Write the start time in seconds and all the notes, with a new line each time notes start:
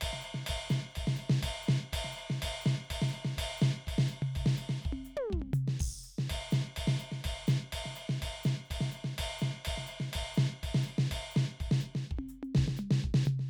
0.01 kick, ride bell
0.13 snare
0.21 hi-hat pedal, ride
0.34 snare
0.46 kick, ride bell
0.55 kick
0.69 snare, hi-hat pedal
0.77 snare
0.90 hi-hat pedal
0.95 kick, ride bell
1.03 kick
1.07 snare
1.16 hi-hat pedal, ride
1.30 snare
1.43 kick, ride bell
1.49 kick
1.62 hi-hat pedal
1.69 snare
1.93 kick, ride bell
1.98 kick
2.04 snare
2.12 hi-hat pedal
2.18 ride
2.30 snare
2.42 kick, ride bell
2.61 hi-hat pedal
2.66 snare
2.84 hi-hat pedal
2.90 kick, ride bell
2.96 kick
3.02 snare
3.08 hi-hat pedal
3.13 ride
3.25 snare
3.38 kick, ride bell
3.57 hi-hat pedal
3.62 snare
3.87 kick, ride bell
3.93 kick
3.98 snare
4.08 hi-hat pedal, ride
4.22 floor tom
4.35 kick, ride bell
4.43 kick, snare
4.57 hi-hat pedal, ride
4.69 snare
4.82 kick, ride
4.92 kick, high tom
5.05 hi-hat pedal
5.17 high tom
5.30 kick, mid tom
5.40 kick, high tom
5.53 hi-hat pedal, floor tom
5.68 snare
5.74 snare
5.80 kick, crash
5.91 kick
6.03 hi-hat pedal
6.19 snare
6.30 kick, ride bell
6.51 snare, hi-hat pedal
6.76 kick, ride bell
6.88 snare
6.99 hi-hat pedal, ride
7.12 snare
7.24 kick, ride bell
7.31 kick
7.47 snare, hi-hat pedal
7.72 kick, ride bell
7.78 kick
7.86 snare
7.95 hi-hat pedal, ride
8.09 snare
8.22 kick, ride bell
8.28 kick
8.43 snare, hi-hat pedal
8.65 hi-hat pedal
8.70 kick, ride bell
8.76 kick
8.81 snare
8.91 hi-hat pedal, ride
9.04 snare
9.18 kick, ride bell
9.24 kick
9.38 snare, hi-hat pedal
9.65 kick, ride bell
9.73 kick
9.78 snare
9.86 hi-hat pedal, ride
10.00 snare
10.13 kick, ride bell
10.21 kick
10.34 snare, hi-hat pedal
10.63 kick, ride bell
10.75 snare
10.83 hi-hat pedal
10.87 ride
10.98 snare
11.11 kick, ride bell
11.17 kick
11.31 hi-hat pedal
11.36 snare
11.43 snare
11.60 kick, ride bell
11.67 kick
11.71 snare
11.80 hi-hat pedal
11.95 snare
12.11 kick
12.17 kick, high tom
12.29 hi-hat pedal
12.43 open hi-hat, high tom
12.55 kick, snare
12.65 kick, snare
12.77 hi-hat pedal, mid tom
12.91 snare
13.04 kick
13.10 kick, snare
13.25 floor tom, hi-hat pedal
13.39 snare